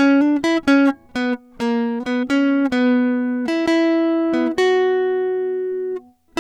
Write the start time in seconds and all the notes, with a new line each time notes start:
0.00 C#4
0.22 D4
0.45 E4
0.69 C#4
1.17 B3
1.61 A#3
2.08 B3
2.31 C#4
2.74 B3
3.50 E4
3.69 E4
4.35 B3
4.59 F#4